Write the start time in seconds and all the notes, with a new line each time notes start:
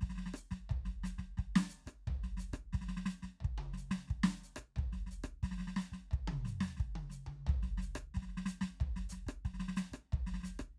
0.01 kick, snare
0.10 snare
0.16 snare
0.18 snare
0.26 snare
0.34 cross-stick, hi-hat pedal
0.51 kick, snare
0.70 kick, floor tom
0.85 snare
1.04 snare, hi-hat pedal
1.18 kick, snare
1.37 kick, snare
1.56 snare
1.70 snare, hi-hat pedal
1.87 kick, cross-stick
2.07 kick, floor tom
2.24 snare
2.37 snare, hi-hat pedal
2.53 kick, cross-stick
2.73 kick, snare
2.81 snare
2.89 snare
2.97 snare
3.06 snare, hi-hat pedal
3.23 kick, snare
3.41 floor tom
3.45 kick
3.58 high tom
3.74 snare
3.78 hi-hat pedal
3.90 kick, snare
4.08 kick, snare
4.24 snare
4.41 snare, hi-hat pedal
4.56 kick, cross-stick
4.76 kick, floor tom
4.93 snare
5.07 snare
5.11 hi-hat pedal
5.24 kick, cross-stick
5.43 kick, snare
5.51 snare
5.58 snare
5.60 snare
5.68 snare
5.77 snare, hi-hat pedal
5.92 kick, snare
6.11 kick, floor tom
6.28 high tom
6.45 snare, hi-hat pedal
6.60 kick, snare
6.77 kick, snare
6.96 high tom
7.10 snare, hi-hat pedal
7.27 kick, high tom
7.47 kick, floor tom
7.63 snare
7.78 snare
7.82 hi-hat pedal
7.96 kick, cross-stick
8.14 kick, snare
8.22 snare
8.29 snare
8.37 snare
8.46 snare, hi-hat pedal
8.61 kick, snare
8.80 kick, floor tom
8.96 snare
9.10 snare, hi-hat pedal
9.27 kick, cross-stick
9.45 kick, snare
9.54 snare
9.60 snare
9.68 snare
9.77 snare, hi-hat pedal
9.92 kick, cross-stick
10.13 kick, floor tom
10.27 snare
10.34 snare
10.41 snare
10.43 snare, hi-hat pedal
10.59 kick, cross-stick